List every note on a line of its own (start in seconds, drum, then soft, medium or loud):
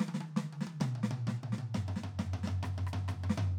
0.00 snare medium
0.00 high tom medium
0.09 high tom medium
0.15 snare medium
0.21 high tom medium
0.37 snare medium
0.37 high tom medium
0.53 high tom medium
0.62 snare medium
0.68 high tom medium
0.81 snare medium
0.81 mid tom loud
0.96 mid tom medium
1.04 snare medium
1.12 mid tom loud
1.28 snare medium
1.28 mid tom medium
1.44 mid tom medium
1.53 snare medium
1.59 mid tom medium
1.75 snare medium
1.75 floor tom loud
1.89 floor tom medium
1.97 snare medium
2.04 floor tom medium
2.20 snare medium
2.20 floor tom medium
2.34 floor tom medium
2.44 snare medium
2.48 floor tom medium
2.64 cross-stick medium
2.64 floor tom loud
2.79 floor tom medium
2.87 cross-stick medium
2.94 floor tom loud
3.09 cross-stick medium
3.09 floor tom medium
3.24 floor tom medium
3.30 snare medium
3.38 floor tom loud